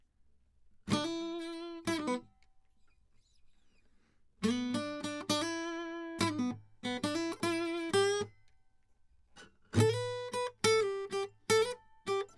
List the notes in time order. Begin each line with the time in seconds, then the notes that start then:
0.88 G2
0.93 E4
1.88 E4
1.99 D4
2.08 B3
4.44 B3
4.75 D4
5.05 D4
5.30 D4
5.42 E4
6.21 E4
6.39 B3
6.51 D#4
6.85 B3
7.04 D4
7.15 E4
7.44 E4
7.94 G4
9.76 A2 B4
10.34 B4
10.64 A4
10.81 G4
11.13 G4
11.50 A4
12.08 G4